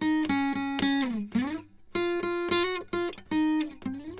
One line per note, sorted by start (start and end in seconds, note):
0.03 0.27 D#4
0.31 0.57 C#4
0.58 0.81 C#4
0.84 1.23 C#4
1.36 1.65 D4
1.97 2.25 F4
2.25 2.53 F4
2.53 2.65 F4
2.65 2.87 F#4
2.94 3.15 F4
3.33 3.67 D#4
3.87 4.18 C#4